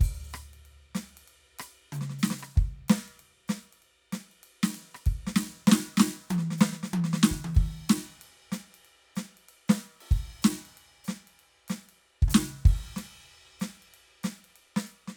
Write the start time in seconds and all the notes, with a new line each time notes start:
0.01 open hi-hat, kick, ride
0.31 cross-stick, hi-hat pedal, ride
0.54 ride
0.66 ride
0.95 snare, hi-hat pedal, ride
1.18 ride
1.28 ride
1.59 cross-stick, hi-hat pedal, ride
1.93 hi-hat pedal, mid tom
2.01 snare
2.10 snare
2.19 hi-hat pedal
2.23 snare
2.31 snare
2.39 hi-hat pedal
2.43 cross-stick
2.56 kick, mid tom
2.89 snare, hi-hat pedal, ride
3.08 ride
3.20 ride
3.48 snare, hi-hat pedal, ride
3.73 ride
3.83 ride
4.13 snare, hi-hat pedal, ride
4.32 ride
4.44 ride
4.64 snare, hi-hat pedal
4.75 ride
4.95 cross-stick
5.06 kick, ride
5.27 snare
5.36 snare
5.68 snare
5.72 snare
5.98 snare, hi-hat pedal
6.00 snare
6.30 hi-hat pedal, high tom
6.39 snare
6.51 snare
6.58 snare, hi-hat pedal
6.73 snare
6.83 snare, hi-hat pedal
6.94 high tom
7.04 snare
7.14 snare, hi-hat pedal
7.23 snare
7.31 kick, mid tom
7.45 high tom
7.55 kick, crash
7.90 snare, ride
8.22 ride
8.52 snare, hi-hat pedal, ride
8.75 ride
8.85 ride
9.16 snare, hi-hat pedal, ride
9.38 ride
9.49 ride
9.68 snare, hi-hat pedal
9.80 ride
10.01 crash
10.11 kick, hi-hat pedal, ride
10.43 snare, hi-hat pedal
10.66 ride
10.78 ride
11.05 snare, hi-hat pedal, ride
11.28 ride
11.40 ride
11.69 snare, hi-hat pedal, ride
11.89 ride
12.23 kick
12.29 hi-hat pedal, mid tom
12.35 snare
12.66 kick, crash
12.97 snare, hi-hat pedal, ride
13.27 ride
13.60 snare, hi-hat pedal, ride
13.83 ride
13.94 ride
14.24 snare, hi-hat pedal, ride
14.45 ride
14.56 ride
14.77 snare, hi-hat pedal
14.88 ride
15.08 snare